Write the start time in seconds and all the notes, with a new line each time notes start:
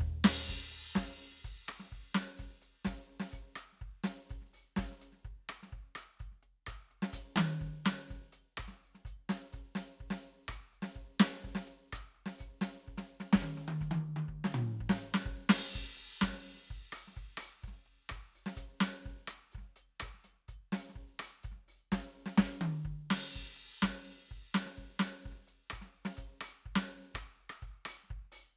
0.01 kick
0.25 snare, crash
0.50 kick
0.72 closed hi-hat
0.95 closed hi-hat, kick, snare
1.22 open hi-hat
1.45 closed hi-hat, kick
1.68 open hi-hat, cross-stick
1.80 snare
1.92 kick, closed hi-hat
2.15 open hi-hat, snare
2.39 closed hi-hat, kick, snare
2.62 open hi-hat
2.85 open hi-hat, kick, snare
3.10 closed hi-hat
3.20 snare
3.31 open hi-hat, kick
3.56 open hi-hat, cross-stick
3.73 snare
3.80 kick, open hi-hat
4.04 closed hi-hat, snare
4.30 closed hi-hat, kick
4.42 snare
4.46 snare
4.54 open hi-hat
4.77 open hi-hat, kick, snare
4.92 snare
5.02 open hi-hat
5.13 snare
5.17 snare
5.25 kick, closed hi-hat
5.50 open hi-hat, cross-stick
5.63 snare
5.73 kick, closed hi-hat
5.96 open hi-hat, cross-stick
6.20 closed hi-hat, kick
6.32 snare
6.43 closed hi-hat
6.67 closed hi-hat, kick, cross-stick
6.91 open hi-hat
7.03 snare
7.13 closed hi-hat, kick
7.23 crash
7.36 snare, high tom
7.61 kick
7.86 closed hi-hat, snare
8.09 open hi-hat, kick
8.16 snare
8.33 closed hi-hat
8.58 closed hi-hat, kick, cross-stick
8.68 snare
8.84 open hi-hat
8.95 snare
9.05 closed hi-hat, kick
9.30 open hi-hat, snare
9.53 closed hi-hat, kick
9.76 closed hi-hat, snare
10.01 kick, closed hi-hat
10.11 snare
10.24 open hi-hat
10.49 open hi-hat, kick, cross-stick
10.74 open hi-hat
10.83 snare
10.95 kick, closed hi-hat
11.20 snare
11.44 kick, closed hi-hat
11.55 snare
11.68 open hi-hat
11.93 closed hi-hat, kick, cross-stick
12.16 closed hi-hat
12.26 snare
12.39 open hi-hat, kick
12.62 closed hi-hat, snare
12.76 snare
12.87 kick, closed hi-hat
12.98 snare
13.10 open hi-hat
13.20 snare
13.33 kick, snare
13.42 high tom
13.57 snare
13.68 high tom
13.81 kick, snare
13.91 high tom
14.17 high tom
14.29 kick
14.45 snare
14.55 mid tom
14.76 hi-hat pedal
14.81 kick
14.90 snare
15.14 snare
15.25 kick, hi-hat pedal
15.50 snare, crash
15.59 snare
15.74 closed hi-hat, kick
15.97 open hi-hat
16.22 closed hi-hat, kick, snare
16.33 snare
16.47 open hi-hat
16.55 snare
16.59 snare
16.63 snare
16.70 kick, open hi-hat
16.93 open hi-hat, cross-stick
17.08 snare
17.16 open hi-hat, kick
17.38 open hi-hat, cross-stick
17.62 open hi-hat, kick
17.68 snare
17.72 snare
17.76 snare
17.86 open hi-hat
18.10 open hi-hat, kick, cross-stick
18.36 open hi-hat
18.46 snare
18.57 closed hi-hat, kick
18.81 open hi-hat, snare
19.05 kick, closed hi-hat
19.28 open hi-hat, cross-stick
19.52 open hi-hat, kick
19.58 snare
19.63 snare
19.66 snare
19.76 closed hi-hat
20.00 open hi-hat, kick, cross-stick
20.14 snare
20.24 closed hi-hat, snare
20.29 snare
20.49 closed hi-hat, kick
20.73 open hi-hat, snare
20.90 snare
20.96 kick, closed hi-hat
21.20 open hi-hat, cross-stick
21.44 closed hi-hat, kick
21.52 snare
21.57 snare
21.61 snare
21.64 open hi-hat, snare
21.92 closed hi-hat, kick, snare
22.17 open hi-hat
22.26 snare
22.38 kick, snare
22.62 high tom
22.85 kick
23.11 snare, crash
23.36 kick
23.57 open hi-hat
23.83 open hi-hat, kick, snare
23.96 snare
24.08 snare, open hi-hat
24.13 snare
24.17 snare
24.31 kick, closed hi-hat
24.55 open hi-hat, snare
24.66 snare
24.77 kick, closed hi-hat
25.00 open hi-hat, snare
25.24 kick, closed hi-hat
25.31 snare
25.36 snare
25.43 snare
25.48 open hi-hat
25.71 open hi-hat, kick, cross-stick
25.82 snare
25.95 open hi-hat
26.05 snare
26.17 closed hi-hat, kick
26.41 open hi-hat, cross-stick
26.66 kick, closed hi-hat
26.76 snare
26.89 open hi-hat
27.15 closed hi-hat, kick, cross-stick
27.41 open hi-hat
27.50 cross-stick
27.63 kick, closed hi-hat
27.86 open hi-hat, cross-stick
28.04 snare
28.10 kick, closed hi-hat
28.25 snare
28.32 open hi-hat